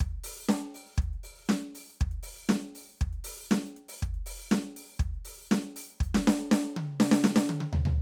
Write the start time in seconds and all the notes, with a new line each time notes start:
0.01 kick, closed hi-hat
0.11 closed hi-hat
0.24 open hi-hat
0.39 open hi-hat
0.47 snare, hi-hat pedal
0.63 closed hi-hat
0.75 open hi-hat
0.90 open hi-hat
0.96 kick, hi-hat pedal
1.03 closed hi-hat
1.14 closed hi-hat
1.24 open hi-hat
1.40 open hi-hat
1.48 snare, hi-hat pedal
1.63 closed hi-hat
1.75 open hi-hat
1.90 open hi-hat
1.96 hi-hat pedal
2.01 kick, closed hi-hat
2.12 closed hi-hat
2.23 open hi-hat
2.38 open hi-hat
2.48 snare, hi-hat pedal
2.64 closed hi-hat
2.71 kick
2.76 open hi-hat
2.89 open hi-hat
2.98 kick, closed hi-hat, hi-hat pedal
3.13 closed hi-hat
3.25 open hi-hat
3.39 open hi-hat
3.50 snare, hi-hat pedal
3.66 closed hi-hat
3.77 closed hi-hat
3.89 open hi-hat
3.99 kick, closed hi-hat, hi-hat pedal
4.15 closed hi-hat
4.27 open hi-hat
4.43 open hi-hat
4.50 snare, hi-hat pedal
4.66 closed hi-hat
4.77 open hi-hat
4.90 open hi-hat
4.96 kick, hi-hat pedal
5.01 closed hi-hat
5.15 closed hi-hat
5.25 open hi-hat
5.40 open hi-hat
5.49 snare, hi-hat pedal
5.65 closed hi-hat
5.77 open hi-hat
5.91 open hi-hat
5.98 kick, hi-hat pedal
6.03 closed hi-hat
6.15 snare
6.28 snare
6.52 snare
6.77 high tom
7.01 snare
7.12 snare
7.25 snare
7.37 snare
7.50 high tom
7.61 high tom
7.73 floor tom
7.86 floor tom